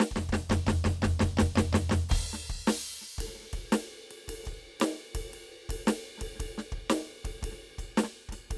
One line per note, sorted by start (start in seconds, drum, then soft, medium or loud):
0.00 snare loud
0.11 kick medium
0.16 snare medium
0.16 floor tom loud
0.29 kick medium
0.29 floor tom loud
0.33 snare loud
0.49 kick medium
0.49 snare loud
0.49 floor tom loud
0.67 kick medium
0.67 snare loud
0.67 floor tom loud
0.84 kick medium
0.84 snare loud
0.84 floor tom loud
1.02 kick medium
1.02 snare loud
1.02 floor tom loud
1.19 kick medium
1.19 snare loud
1.19 floor tom loud
1.37 snare loud
1.37 floor tom loud
1.41 kick medium
1.55 snare loud
1.55 floor tom loud
1.60 kick soft
1.73 snare loud
1.73 floor tom loud
1.89 kick soft
1.89 snare loud
1.89 floor tom loud
2.09 kick loud
2.09 snare soft
2.09 crash loud
2.33 snare medium
2.49 kick medium
2.67 snare loud
2.67 crash loud
3.01 snare soft
3.18 kick medium
3.18 ride loud
3.27 snare soft
3.35 snare soft
3.40 snare soft
3.43 snare soft
3.53 kick medium
3.53 ride medium
3.72 snare loud
3.72 ride loud
4.11 ride medium
4.23 snare soft
4.28 kick soft
4.28 ride loud
4.43 kick medium
4.43 snare soft
4.43 ride bell medium
4.64 kick soft
4.80 snare loud
4.80 ride loud
5.15 kick medium
5.15 ride loud
5.30 snare soft
5.30 ride medium
5.35 snare soft
5.69 kick medium
5.69 ride loud
5.87 snare loud
5.87 ride loud
6.18 kick medium
6.18 snare soft
6.18 ride loud
6.35 snare soft
6.39 kick medium
6.39 ride loud
6.58 snare medium
6.72 kick medium
6.90 snare loud
6.90 ride loud
7.24 kick medium
7.24 snare soft
7.24 ride medium
7.41 kick medium
7.41 snare soft
7.41 ride loud
7.51 snare soft
7.78 kick medium
7.78 ride bell medium
7.97 snare loud
7.97 ride bell medium
8.03 snare medium
8.29 kick soft
8.29 snare soft
8.29 ride bell medium
8.47 kick medium
8.47 snare soft
8.47 ride medium